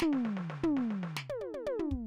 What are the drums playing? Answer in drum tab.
HH |----------x-----|
SD |ooooo-oooo------|
T1 |----------oooo--|
FT |o----o--------o-|
BD |---------------o|